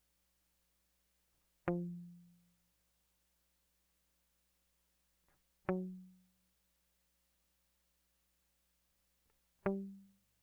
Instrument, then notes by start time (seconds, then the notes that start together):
electric guitar
1.69 F3
5.70 F#3
9.67 G3